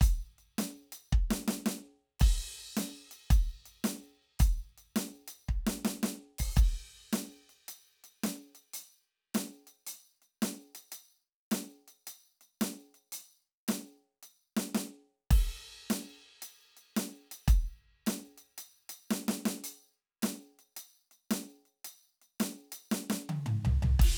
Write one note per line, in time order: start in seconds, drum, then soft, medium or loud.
0.01 closed hi-hat loud
0.01 kick loud
0.38 closed hi-hat soft
0.58 snare loud
0.58 closed hi-hat loud
0.92 closed hi-hat loud
1.12 kick loud
1.31 snare loud
1.48 snare loud
1.66 snare loud
2.20 kick loud
2.20 hi-hat pedal loud
2.20 crash loud
2.77 snare loud
2.77 closed hi-hat loud
3.11 closed hi-hat medium
3.30 kick loud
3.30 closed hi-hat loud
3.66 closed hi-hat medium
3.84 snare loud
3.84 closed hi-hat loud
4.22 closed hi-hat soft
4.39 closed hi-hat loud
4.39 kick loud
4.78 closed hi-hat medium
4.96 snare loud
4.96 closed hi-hat loud
5.28 closed hi-hat loud
5.49 kick medium
5.67 snare loud
5.85 snare loud
6.03 snare loud
6.39 kick medium
6.39 percussion loud
6.56 kick loud
6.56 hi-hat pedal loud
6.56 crash medium
7.13 snare loud
7.13 closed hi-hat loud
7.49 closed hi-hat soft
7.68 closed hi-hat loud
8.04 closed hi-hat medium
8.24 snare loud
8.24 closed hi-hat loud
8.55 closed hi-hat medium
8.74 closed hi-hat loud
9.34 snare loud
9.34 closed hi-hat loud
9.67 closed hi-hat medium
9.87 closed hi-hat loud
10.22 closed hi-hat soft
10.42 snare loud
10.42 closed hi-hat loud
10.75 closed hi-hat loud
10.92 closed hi-hat loud
11.51 snare loud
11.51 closed hi-hat loud
11.88 closed hi-hat medium
12.07 closed hi-hat loud
12.41 closed hi-hat soft
12.61 snare loud
12.61 closed hi-hat loud
12.94 closed hi-hat soft
13.12 closed hi-hat loud
13.68 snare loud
13.68 closed hi-hat loud
14.23 closed hi-hat medium
14.57 snare loud
14.75 snare loud
15.31 kick loud
15.31 crash loud
15.90 snare loud
15.90 closed hi-hat loud
16.42 closed hi-hat loud
16.77 closed hi-hat medium
16.97 snare loud
16.97 closed hi-hat loud
17.31 closed hi-hat loud
17.48 kick loud
17.48 closed hi-hat loud
18.06 snare loud
18.06 closed hi-hat loud
18.38 closed hi-hat medium
18.58 closed hi-hat loud
18.89 closed hi-hat loud
19.11 snare loud
19.28 snare loud
19.45 snare loud
19.64 closed hi-hat loud
20.22 snare loud
20.22 closed hi-hat loud
20.59 closed hi-hat soft
20.77 closed hi-hat loud
21.11 closed hi-hat soft
21.31 snare loud
21.31 closed hi-hat loud
21.65 closed hi-hat soft
21.85 closed hi-hat loud
22.22 closed hi-hat soft
22.40 snare loud
22.40 closed hi-hat loud
22.72 closed hi-hat loud
22.91 snare loud
23.10 snare loud
23.29 high tom loud
23.46 mid tom loud
23.65 floor tom loud
23.82 floor tom loud
23.99 kick loud
23.99 ride loud
23.99 crash loud